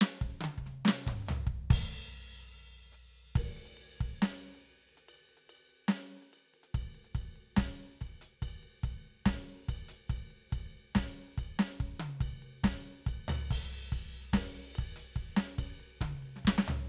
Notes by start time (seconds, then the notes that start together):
0.02 snare
0.21 kick
0.30 hi-hat pedal
0.41 high tom
0.44 high tom
0.58 kick
0.66 snare
0.85 snare
0.88 snare
1.06 kick, mid tom
1.26 floor tom, hi-hat pedal
1.47 kick
1.70 kick, crash
2.92 hi-hat pedal
3.35 kick, hi-hat pedal, ride
3.56 ride
3.65 closed hi-hat
3.77 ride
3.98 kick, ride
4.22 snare, ride bell
4.55 closed hi-hat
4.66 ride
4.89 ride
4.97 closed hi-hat
5.08 ride bell
5.29 ride
5.37 closed hi-hat
5.49 ride bell
5.69 ride
5.88 snare, ride bell
6.22 closed hi-hat
6.33 ride bell
6.54 ride
6.63 closed hi-hat
6.74 kick, ride bell
6.95 ride
7.04 closed hi-hat
7.15 kick, ride bell
7.36 ride
7.56 kick, snare, ride bell
7.80 ride
7.91 closed hi-hat
8.01 kick, ride bell
8.21 closed hi-hat
8.42 kick, ride bell
8.63 ride
8.83 kick, ride bell
9.26 kick, snare, ride
9.49 ride
9.59 closed hi-hat
9.68 kick, ride bell
9.88 closed hi-hat
10.09 kick, ride bell
10.30 ride
10.49 kick, hi-hat pedal, ride bell
10.75 ride
10.93 kick, snare, hi-hat pedal
10.97 ride bell
11.18 ride
11.28 closed hi-hat
11.37 kick, ride bell
11.59 snare
11.80 kick, ride bell
12.00 high tom
12.20 kick, ride bell
12.42 ride
12.63 kick, snare, ride bell
12.87 ride
13.06 kick, ride bell
13.28 floor tom, ride bell
13.50 kick, crash
13.92 kick, ride bell
14.14 ride
14.33 kick, snare, ride
14.55 ride
14.65 closed hi-hat
14.75 kick, ride bell
14.96 closed hi-hat
15.16 kick, ride bell
15.36 snare
15.58 kick, ride bell
15.80 ride
16.01 kick, high tom
16.22 ride
16.36 snare
16.45 kick, snare
16.58 snare
16.68 floor tom
16.78 closed hi-hat